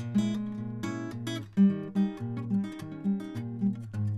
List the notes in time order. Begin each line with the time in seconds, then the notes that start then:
0.00 A#2
0.16 G#3 E4
0.59 A#2
0.84 A#2 C#4 E4
1.14 A#2
1.28 C#4 E4
1.58 G3
1.71 D#3
1.96 G3 D#4
2.22 A#2
2.38 C#4
2.52 G3
2.65 D#4
2.83 D#3
2.93 C#4
3.06 G3
3.21 D#4
3.36 A#2
3.62 G3
3.95 G#2 G#3